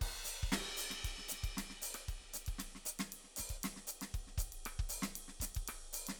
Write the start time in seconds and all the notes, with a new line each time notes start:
0.01 kick, crash
0.24 hi-hat pedal
0.43 kick
0.49 snare, hi-hat pedal, ride
0.67 snare
0.77 hi-hat pedal, ride
0.90 snare, ride
1.04 kick, ride
1.18 snare
1.28 snare, hi-hat pedal, ride
1.43 kick, ride
1.57 snare, ride
1.70 snare
1.82 hi-hat pedal, ride
1.94 cross-stick, ride
2.08 kick, ride
2.20 snare
2.33 snare, hi-hat pedal, ride
2.46 kick, ride
2.58 snare, ride
2.75 snare
2.85 hi-hat pedal, ride
2.99 snare, ride
3.12 ride
3.24 snare
3.36 kick, snare, hi-hat pedal, ride
3.49 kick, ride
3.60 snare, hi-hat pedal, ride
3.76 snare
3.87 hi-hat pedal, ride
4.01 snare, ride
4.14 kick, ride
4.27 snare
4.37 kick, hi-hat pedal, ride
4.52 ride
4.65 cross-stick, ride
4.79 kick
4.89 hi-hat pedal, ride
5.02 snare, ride
5.15 ride
5.28 snare
5.40 kick, snare, hi-hat pedal, ride
5.55 kick, ride
5.68 cross-stick, ride
5.93 hi-hat pedal, ride
6.07 snare, ride